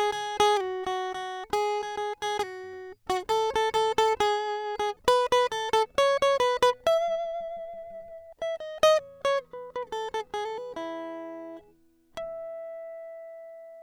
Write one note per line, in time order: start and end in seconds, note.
0.00 0.11 G#4
0.12 0.38 G#4
0.41 0.58 G#4
0.58 0.88 F#4
0.89 1.12 F#4
1.12 1.49 F#4
1.54 1.68 G#4
1.68 1.79 G#4
1.80 1.97 G#4
1.97 2.17 G#4
2.23 2.40 G#4
2.42 2.98 F#4
3.11 3.27 F#4
3.30 3.53 A4
3.57 3.73 A4
3.75 3.96 A4
3.99 4.18 A4
4.21 4.78 G#4
4.81 4.96 G#4
5.09 5.30 B4
5.33 5.51 B4
5.53 5.72 A4
5.75 5.88 A4
5.99 6.21 C#5
6.23 6.40 C#5
6.42 6.59 B4
6.64 6.76 B4
6.88 7.03 E5
8.43 8.59 E5
8.62 8.80 D#5
8.84 8.99 D#5
8.99 9.23 C#5
9.26 9.44 C#5
9.55 9.74 B4
9.77 9.93 B4
9.94 10.12 A4
10.15 10.26 A4
10.35 10.46 G#4
10.46 10.57 A4
10.59 10.76 B4
10.78 11.64 E4
12.18 13.83 E5